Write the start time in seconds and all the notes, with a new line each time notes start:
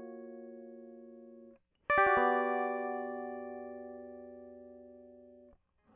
1.90 D5
1.98 G4
2.07 F#4
2.18 B3